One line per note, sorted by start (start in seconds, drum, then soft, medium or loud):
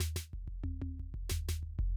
0.00 snare medium
0.00 floor tom medium
0.16 snare medium
0.16 floor tom medium
0.33 kick soft
0.48 kick soft
0.64 floor tom medium
0.64 high tom medium
0.82 floor tom medium
0.82 high tom medium
1.00 kick soft
1.14 kick soft
1.30 snare medium
1.30 floor tom medium
1.49 snare medium
1.49 floor tom medium
1.63 kick soft
1.79 kick medium